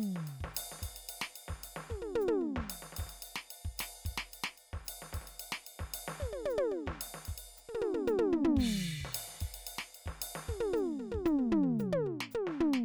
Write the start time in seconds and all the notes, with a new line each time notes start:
0.01 hi-hat pedal, ride
0.16 snare
0.27 ride
0.41 kick, snare
0.46 kick
0.54 hi-hat pedal, ride bell
0.72 snare
0.79 kick, snare, ride
0.84 snare
0.96 ride
1.09 hi-hat pedal, ride bell
1.22 snare
1.36 ride
1.48 kick, snare
1.63 hi-hat pedal, ride bell
1.76 snare
1.90 kick, mid tom
2.02 mid tom
2.15 mid tom
2.21 hi-hat pedal
2.28 mid tom
2.41 mid tom
2.56 kick, snare
2.69 hi-hat pedal, ride bell
2.83 snare
2.97 kick, snare, ride
3.04 kick, snare
3.09 ride bell
3.22 hi-hat pedal, ride
3.36 snare
3.51 ride
3.65 kick
3.78 snare, hi-hat pedal, ride bell
4.05 kick, ride
4.11 kick
4.18 snare
4.32 hi-hat pedal, ride
4.44 snare
4.58 ride
4.73 kick, snare
4.78 kick
4.85 hi-hat pedal, ride bell
5.02 snare
5.13 kick, snare, ride
5.22 snare
5.27 ride
5.40 hi-hat pedal, ride
5.52 snare
5.67 ride
5.79 kick, snare
5.94 hi-hat pedal, ride
6.08 snare
6.20 kick, high tom
6.33 high tom
6.45 high tom
6.50 hi-hat pedal
6.58 high tom
6.71 high tom
6.87 kick, snare
7.01 hi-hat pedal, ride bell
7.14 snare
7.25 kick, ride bell
7.38 ride bell
7.57 hi-hat pedal
7.69 mid tom
7.74 mid tom
7.81 mid tom
7.94 mid tom
8.07 hi-hat pedal, mid tom
8.19 mid tom
8.32 floor tom
8.44 floor tom
8.57 kick, hi-hat pedal, crash
8.67 snare
9.01 kick
9.05 snare
9.13 hi-hat pedal, ride bell
9.28 snare
9.35 snare
9.41 kick, ride
9.47 snare
9.54 ride
9.67 hi-hat pedal, ride
9.79 snare
9.95 ride
10.06 kick, snare
10.21 hi-hat pedal, ride
10.35 snare
10.49 kick, mid tom
10.60 mid tom
10.73 hi-hat pedal, mid tom
10.99 mid tom
11.11 kick, mid tom
11.25 floor tom, hi-hat pedal
11.39 mid tom
11.51 floor tom
11.63 mid tom
11.79 hi-hat pedal, mid tom
11.93 high tom
12.06 mid tom
12.21 snare
12.31 hi-hat pedal, mid tom
12.47 snare
12.60 floor tom
12.74 snare